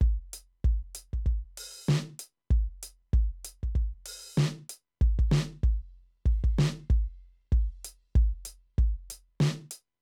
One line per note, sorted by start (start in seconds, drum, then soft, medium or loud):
0.01 kick medium
0.33 closed hi-hat loud
0.64 kick medium
0.95 closed hi-hat loud
1.13 kick soft
1.26 kick medium
1.57 open hi-hat loud
1.88 snare loud
1.88 hi-hat pedal medium
2.19 closed hi-hat loud
2.51 kick medium
2.83 closed hi-hat loud
3.13 kick medium
3.45 closed hi-hat loud
3.63 kick soft
3.75 kick medium
4.06 open hi-hat loud
4.37 snare loud
4.37 hi-hat pedal medium
4.69 closed hi-hat loud
5.01 kick medium
5.19 kick medium
5.25 crash soft
5.32 snare loud
5.63 kick medium
6.26 kick medium
6.26 snare soft
6.26 crash soft
6.31 ride soft
6.44 kick medium
6.50 crash soft
6.50 ride soft
6.59 snare loud
6.90 kick medium
7.52 kick medium
7.57 crash soft
7.85 closed hi-hat loud
8.15 kick medium
8.45 closed hi-hat loud
8.78 kick medium
9.10 open hi-hat loud
9.40 snare loud
9.40 hi-hat pedal medium
9.71 closed hi-hat loud